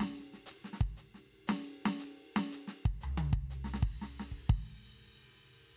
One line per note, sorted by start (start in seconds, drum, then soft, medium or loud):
0.01 snare medium
0.01 ride medium
0.20 snare soft
0.34 snare soft
0.47 hi-hat pedal medium
0.52 ride soft
0.65 snare soft
0.74 snare soft
0.81 kick medium
0.81 ride medium
0.97 hi-hat pedal medium
1.02 ride soft
1.15 snare soft
1.48 snare medium
1.48 hi-hat pedal medium
1.48 ride medium
1.86 snare medium
1.86 ride medium
2.00 hi-hat pedal medium
2.04 ride medium
2.37 snare medium
2.37 ride medium
2.52 hi-hat pedal medium
2.52 ride medium
2.68 snare soft
2.86 kick medium
3.02 floor tom medium
3.02 hi-hat pedal medium
3.18 high tom loud
3.34 kick medium
3.51 hi-hat pedal medium
3.51 ride medium
3.65 snare soft
3.74 snare soft
3.83 kick medium
3.83 crash medium
4.02 snare medium
4.20 snare soft
4.32 kick soft
4.50 kick medium
4.50 crash medium